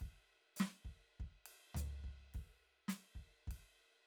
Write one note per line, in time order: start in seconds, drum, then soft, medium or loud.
0.01 kick soft
0.01 ride soft
0.57 snare medium
0.57 hi-hat pedal medium
0.57 ride soft
0.85 kick soft
1.20 kick soft
1.47 ride medium
1.75 floor tom medium
1.75 hi-hat pedal medium
2.05 kick soft
2.35 kick soft
2.35 crash soft
2.89 snare medium
2.89 hi-hat pedal medium
2.89 ride medium
3.16 kick soft
3.48 kick soft
3.48 ride soft